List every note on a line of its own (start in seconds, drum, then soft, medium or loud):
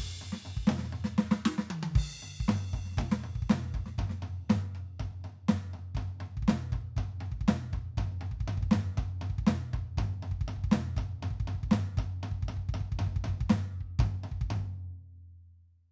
0.22 floor tom medium
0.33 snare medium
0.45 floor tom medium
0.57 kick medium
0.67 snare loud
0.67 floor tom loud
0.79 snare medium
0.84 snare soft
0.93 floor tom medium
0.98 hi-hat pedal soft
1.05 snare medium
1.18 snare loud
1.32 snare loud
1.46 snare loud
1.59 snare medium
1.71 high tom loud
1.83 high tom loud
1.96 kick loud
1.96 crash medium
2.23 floor tom medium
2.41 kick medium
2.49 snare loud
2.49 floor tom loud
2.74 kick medium
2.74 floor tom medium
2.86 snare soft
2.92 snare soft
2.97 kick medium
2.97 snare soft
2.97 floor tom loud
3.12 snare loud
3.24 floor tom medium
3.36 kick medium
3.42 kick medium
3.50 snare loud
3.50 floor tom loud
3.74 kick medium
3.74 floor tom medium
3.86 snare soft
3.99 kick medium
3.99 floor tom loud
4.10 snare soft
4.23 floor tom medium
4.50 snare loud
4.50 floor tom loud
4.75 floor tom soft
5.00 kick medium
5.00 floor tom medium
5.25 floor tom medium
5.49 snare loud
5.49 floor tom loud
5.74 floor tom medium
5.95 kick medium
5.95 floor tom loud
6.21 floor tom medium
6.37 kick medium
6.43 kick medium
6.48 snare loud
6.48 floor tom loud
6.72 kick medium
6.72 floor tom medium
6.97 kick medium
6.97 floor tom loud
7.21 floor tom medium
7.32 kick medium
7.41 kick medium
7.48 snare loud
7.48 floor tom loud
7.73 kick medium
7.73 floor tom medium
7.98 kick medium
7.98 floor tom loud
8.21 floor tom medium
8.32 kick medium
8.41 kick medium
8.48 floor tom loud
8.58 kick medium
8.63 kick medium
8.72 snare loud
8.72 floor tom loud
8.98 kick medium
8.98 floor tom loud
9.22 floor tom loud
9.30 kick medium
9.39 kick medium
9.47 snare loud
9.47 floor tom loud
9.74 kick medium
9.74 floor tom medium
9.98 kick medium
9.98 floor tom loud
10.23 floor tom medium
10.32 kick medium
10.41 kick medium
10.48 floor tom loud
10.57 kick soft
10.64 kick medium
10.72 snare loud
10.72 floor tom loud
10.97 kick medium
10.97 floor tom loud
11.23 floor tom loud
11.31 kick soft
11.40 kick medium
11.48 floor tom loud
11.55 kick soft
11.64 kick medium
11.72 snare loud
11.72 floor tom loud
11.98 kick medium
11.98 floor tom loud
12.23 floor tom loud
12.32 kick soft
12.43 kick medium
12.49 floor tom loud
12.57 kick soft
12.69 kick medium
12.74 floor tom loud
12.81 kick soft
12.92 kick medium
12.99 floor tom loud
13.07 kick soft
13.16 kick medium
13.25 kick medium
13.25 floor tom loud
13.41 kick medium
13.50 kick soft
13.50 snare loud
13.50 floor tom loud
13.81 kick soft
13.99 kick loud
13.99 floor tom loud
14.24 floor tom medium
14.32 kick soft
14.42 kick medium
14.51 floor tom loud
14.59 kick soft